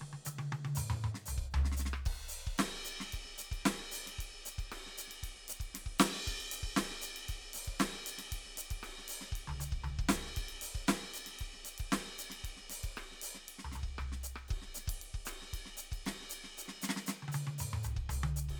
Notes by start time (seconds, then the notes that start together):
0.01 high tom
0.13 high tom
0.25 hi-hat pedal, high tom
0.38 high tom
0.52 high tom
0.65 high tom
0.75 hi-hat pedal, mid tom
0.90 mid tom
1.04 mid tom
1.14 snare
1.26 floor tom, hi-hat pedal
1.37 kick
1.50 floor tom, hi-hat pedal
1.65 snare
1.72 snare
1.77 snare, hi-hat pedal
1.85 snare
1.93 cross-stick
2.05 kick, crash
2.28 hi-hat pedal
2.47 kick
2.58 snare, ride
2.75 snare
2.85 hi-hat pedal
3.00 snare
3.12 kick, ride
3.24 snare
3.38 snare, hi-hat pedal, ride
3.51 kick, ride
3.65 snare, ride
3.82 snare
3.91 hi-hat pedal, ride
4.06 snare, ride
4.18 kick, ride
4.31 snare
4.45 snare, hi-hat pedal, ride
4.58 kick, ride
4.72 cross-stick, ride
4.86 snare
4.98 hi-hat pedal, ride
5.07 snare, ride
5.23 kick, ride
5.35 snare
5.48 snare, hi-hat pedal, ride
5.60 kick, ride
5.74 snare, ride
5.86 kick
5.99 snare, hi-hat pedal, ride
6.15 snare
6.27 kick, ride
6.40 snare, ride
6.51 hi-hat pedal, ride
6.63 kick
6.75 snare, hi-hat pedal, ride
6.90 snare
7.01 hi-hat pedal, ride
7.14 snare, ride
7.27 kick, hi-hat pedal, ride
7.40 snare
7.53 snare, hi-hat pedal, ride
7.65 kick, ride
7.79 snare, hi-hat pedal, ride
7.93 snare
8.06 hi-hat pedal, ride
8.18 snare, ride
8.32 kick, ride
8.45 snare
8.56 snare, hi-hat pedal, ride
8.70 kick, ride
8.82 cross-stick, hi-hat pedal, ride
8.98 snare
9.08 hi-hat pedal, ride
9.21 snare
9.32 kick, ride
9.47 floor tom, high tom
9.60 hi-hat pedal, high tom
9.72 kick
9.83 floor tom, hi-hat pedal, high tom
9.99 kick
10.09 snare, hi-hat pedal, ride
10.26 snare
10.35 kick, hi-hat pedal, ride
10.48 ride
10.53 snare
10.61 hi-hat pedal, ride
10.75 kick
10.87 snare, hi-hat pedal, ride
11.03 snare
11.14 hi-hat pedal, ride
11.26 snare, ride
11.39 kick, hi-hat pedal, ride
11.53 snare
11.64 snare, hi-hat pedal, ride
11.78 kick, ride
11.91 snare, hi-hat pedal, ride
12.06 snare
12.18 hi-hat pedal, ride
12.30 snare, ride
12.43 kick, hi-hat pedal, ride
12.57 snare
12.69 snare, hi-hat pedal, ride
12.83 kick, ride
12.97 cross-stick, ride
13.11 snare
13.22 hi-hat pedal, ride
13.34 snare
13.48 ride
13.58 snare
13.64 floor tom
13.72 snare, floor tom, hi-hat pedal
13.83 kick
13.98 cross-stick, floor tom
14.12 snare
14.23 hi-hat pedal
14.36 cross-stick
14.48 kick, ride
14.62 snare
14.74 snare, hi-hat pedal
14.87 kick, ride
15.01 ride
15.14 kick
15.25 cross-stick, hi-hat pedal, ride
15.41 snare
15.53 kick, ride
15.66 snare
15.77 hi-hat pedal, ride
15.92 kick, ride
16.06 snare, ride
16.21 snare
16.29 hi-hat pedal, ride
16.44 snare
16.57 hi-hat pedal, ride
16.68 snare
16.82 snare, hi-hat pedal
16.89 snare
16.96 snare
17.06 snare, hi-hat pedal
17.22 high tom
17.28 hi-hat pedal, high tom
17.34 high tom
17.47 high tom
17.58 hi-hat pedal, mid tom
17.73 mid tom
17.83 floor tom, hi-hat pedal
17.96 kick
18.09 floor tom, hi-hat pedal
18.23 high tom
18.36 hi-hat pedal
18.48 kick, ride